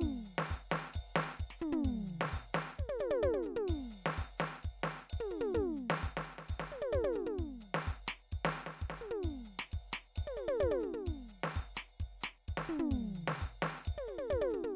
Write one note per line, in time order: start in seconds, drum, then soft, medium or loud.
0.01 kick soft
0.01 ride bell medium
0.10 kick soft
0.24 hi-hat pedal medium
0.24 ride soft
0.38 snare medium
0.49 kick soft
0.49 ride bell medium
0.70 snare medium
0.70 hi-hat pedal medium
0.94 kick soft
0.94 ride medium
1.14 snare loud
1.14 hi-hat pedal medium
1.40 kick soft
1.40 ride bell medium
1.50 snare soft
1.59 floor tom medium
1.59 hi-hat pedal medium
1.72 floor tom medium
1.84 kick soft
1.84 ride bell medium
1.91 kick soft
2.06 hi-hat pedal medium
2.06 ride soft
2.21 snare medium
2.32 kick soft
2.32 ride medium
2.53 snare medium
2.53 hi-hat pedal medium
2.78 kick soft
2.78 high tom soft
2.89 high tom medium
2.99 hi-hat pedal loud
2.99 high tom medium
3.10 high tom loud
3.18 hi-hat pedal soft
3.22 kick soft
3.22 high tom loud
3.33 high tom medium
3.42 hi-hat pedal loud
3.42 mid tom soft
3.56 mid tom loud
3.68 kick soft
3.68 ride bell medium
3.77 kick soft
3.90 hi-hat pedal loud
3.90 ride soft
4.06 snare medium
4.11 hi-hat pedal soft
4.17 kick soft
4.17 ride medium
4.37 snare medium
4.37 hi-hat pedal loud
4.58 hi-hat pedal soft
4.63 kick soft
4.63 ride bell medium
4.83 snare medium
4.83 hi-hat pedal medium
5.10 kick soft
5.10 ride medium
5.20 mid tom medium
5.30 hi-hat pedal medium
5.30 mid tom medium
5.40 mid tom loud
5.54 kick soft
5.54 mid tom loud
5.76 hi-hat pedal medium
5.90 snare medium
6.01 kick soft
6.01 ride bell medium
6.17 snare medium
6.23 hi-hat pedal medium
6.38 snare soft
6.48 kick soft
6.48 ride medium
6.60 snare medium
6.69 hi-hat pedal medium
6.69 high tom medium
6.81 high tom medium
6.92 kick soft
6.92 high tom loud
7.02 kick soft
7.02 high tom loud
7.12 hi-hat pedal medium
7.12 mid tom medium
7.26 mid tom medium
7.38 kick soft
7.38 ride bell soft
7.60 hi-hat pedal loud
7.60 ride soft
7.74 snare medium
7.86 kick soft
7.86 ride bell medium
8.06 snare medium
8.06 hi-hat pedal medium
8.32 kick soft
8.32 ride bell soft
8.45 snare medium
8.53 hi-hat pedal medium
8.53 ride soft
8.66 snare soft
8.78 kick soft
8.78 ride bell soft
8.90 snare soft
8.97 hi-hat pedal medium
8.97 mid tom medium
9.10 mid tom medium
9.23 kick soft
9.23 ride bell medium
9.30 kick soft
9.44 hi-hat pedal medium
9.44 ride soft
9.59 snare medium
9.72 kick soft
9.72 ride bell medium
9.92 snare medium
9.92 hi-hat pedal medium
10.16 kick soft
10.16 ride medium
10.23 kick soft
10.23 high tom medium
10.36 hi-hat pedal medium
10.36 high tom medium
10.48 high tom loud
10.57 hi-hat pedal soft
10.57 high tom loud
10.63 kick soft
10.68 kick soft
10.68 high tom loud
10.80 hi-hat pedal medium
10.80 mid tom medium
10.93 mid tom medium
11.06 kick soft
11.06 ride bell medium
11.28 hi-hat pedal medium
11.28 ride soft
11.43 snare medium
11.54 kick soft
11.54 ride bell medium
11.74 snare medium
11.74 hi-hat pedal medium
12.00 kick soft
12.00 ride bell soft
12.21 snare medium
12.21 hi-hat pedal loud
12.42 hi-hat pedal soft
12.48 kick soft
12.48 ride bell soft
12.57 snare medium
12.66 floor tom medium
12.66 hi-hat pedal medium
12.79 floor tom medium
12.91 kick soft
12.91 ride bell medium
12.97 kick soft
13.15 hi-hat pedal medium
13.15 ride soft
13.27 snare medium
13.39 kick soft
13.39 ride bell medium
13.46 ride soft
13.61 snare medium
13.61 hi-hat pedal medium
13.85 kick soft
13.85 ride medium
13.95 kick soft
13.95 high tom medium
14.07 hi-hat pedal medium
14.07 high tom soft
14.18 high tom medium
14.27 hi-hat pedal soft
14.27 high tom loud
14.33 kick soft
14.41 high tom loud
14.50 hi-hat pedal medium
14.50 mid tom medium
14.63 mid tom medium